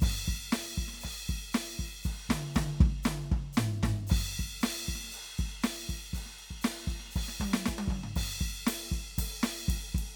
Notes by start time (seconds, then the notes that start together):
0.01 kick, hi-hat pedal, crash
0.25 kick, crash
0.51 kick, snare, hi-hat pedal, crash
0.77 kick, crash
0.88 snare
0.93 snare
0.97 snare, hi-hat pedal
1.01 snare, crash
1.03 kick, snare
1.06 snare
1.29 kick, crash
1.52 snare, hi-hat pedal, crash
1.79 kick, crash
2.03 kick, hi-hat pedal, crash
2.30 kick, snare, mid tom
2.54 kick, snare, hi-hat pedal, mid tom
2.81 kick, mid tom
3.03 kick, snare, hi-hat pedal, mid tom
3.32 kick, mid tom
3.53 hi-hat pedal
3.57 kick, snare, floor tom
3.83 kick, snare, floor tom
4.07 hi-hat pedal, crash
4.12 kick
4.39 kick
4.60 kick, snare, hi-hat pedal, crash
4.89 kick
4.95 kick, snare
5.00 snare
5.04 snare
5.06 snare
5.09 snare, hi-hat pedal
5.11 snare
5.14 snare, crash
5.39 kick, crash
5.63 snare, hi-hat pedal, crash
5.89 kick, crash
6.14 kick, hi-hat pedal, crash
6.26 snare
6.38 kick, crash
6.51 kick
6.62 snare, hi-hat pedal, crash
6.88 kick, crash
7.00 snare
7.05 snare
7.09 snare, hi-hat pedal
7.16 kick, crash
7.28 snare
7.40 kick, high tom
7.54 snare
7.66 kick, snare, hi-hat pedal
7.78 high tom
7.88 kick, mid tom
8.04 floor tom
8.16 kick, hi-hat pedal, crash
8.39 kick, crash
8.67 snare, hi-hat pedal, crash
8.92 kick, crash
9.13 snare
9.17 kick, hi-hat pedal, crash
9.43 snare, crash
9.69 kick, crash
9.95 kick, crash